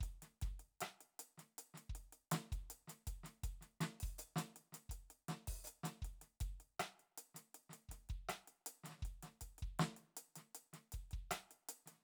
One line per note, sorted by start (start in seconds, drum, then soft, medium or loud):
0.00 kick soft
0.00 closed hi-hat soft
0.22 snare soft
0.22 closed hi-hat soft
0.42 kick soft
0.42 snare soft
0.42 closed hi-hat soft
0.59 closed hi-hat soft
0.81 cross-stick medium
0.81 closed hi-hat medium
1.01 closed hi-hat soft
1.19 closed hi-hat medium
1.38 snare soft
1.38 closed hi-hat soft
1.58 closed hi-hat medium
1.74 snare soft
1.74 closed hi-hat soft
1.89 kick soft
1.95 closed hi-hat soft
2.12 closed hi-hat soft
2.31 snare medium
2.31 closed hi-hat medium
2.52 kick soft
2.52 closed hi-hat soft
2.70 closed hi-hat medium
2.88 snare soft
2.88 closed hi-hat medium
3.07 kick soft
3.07 closed hi-hat medium
3.23 snare soft
3.23 closed hi-hat soft
3.43 kick soft
3.43 closed hi-hat medium
3.61 snare soft
3.61 closed hi-hat soft
3.80 snare medium
3.80 closed hi-hat medium
4.00 kick soft
4.00 open hi-hat medium
4.18 closed hi-hat medium
4.18 hi-hat pedal medium
4.36 snare medium
4.36 closed hi-hat medium
4.56 closed hi-hat soft
4.72 snare soft
4.72 closed hi-hat medium
4.89 kick soft
4.89 closed hi-hat medium
5.10 closed hi-hat soft
5.28 snare soft
5.28 closed hi-hat soft
5.47 kick soft
5.47 open hi-hat medium
5.64 closed hi-hat medium
5.64 hi-hat pedal medium
5.83 snare soft
5.83 closed hi-hat medium
6.02 kick soft
6.02 closed hi-hat soft
6.21 snare soft
6.21 closed hi-hat soft
6.40 kick soft
6.40 closed hi-hat medium
6.60 closed hi-hat soft
6.80 cross-stick medium
6.80 closed hi-hat medium
6.99 closed hi-hat soft
7.18 closed hi-hat medium
7.34 snare soft
7.34 closed hi-hat medium
7.54 closed hi-hat soft
7.69 snare soft
7.69 closed hi-hat soft
7.89 kick soft
7.89 snare soft
7.89 closed hi-hat soft
8.09 kick soft
8.09 closed hi-hat soft
8.29 cross-stick medium
8.29 closed hi-hat medium
8.47 closed hi-hat soft
8.66 closed hi-hat medium
8.84 snare soft
8.84 closed hi-hat soft
8.87 snare soft
8.90 snare soft
8.98 snare soft
9.02 kick soft
9.02 closed hi-hat soft
9.23 snare soft
9.23 closed hi-hat soft
9.41 kick soft
9.41 closed hi-hat medium
9.58 closed hi-hat soft
9.62 kick soft
9.79 snare medium
9.79 closed hi-hat soft
9.96 closed hi-hat soft
10.17 closed hi-hat medium
10.36 snare soft
10.36 closed hi-hat medium
10.55 closed hi-hat medium
10.73 snare soft
10.73 closed hi-hat soft
10.92 kick soft
10.92 closed hi-hat medium
11.11 kick soft
11.11 closed hi-hat soft
11.31 cross-stick medium
11.31 closed hi-hat medium
11.51 closed hi-hat soft
11.69 closed hi-hat medium
11.86 snare soft
11.86 closed hi-hat soft
11.89 snare soft
11.92 snare soft
11.96 snare soft